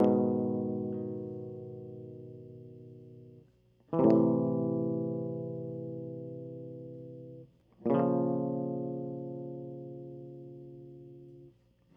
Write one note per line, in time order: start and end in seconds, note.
0.00 3.42 B2
0.05 3.50 D#3
3.93 7.46 E3
4.00 7.46 C3
4.05 7.47 A2
7.86 11.52 A#2
7.86 11.51 C#3
7.94 11.52 F3
8.00 8.05 A3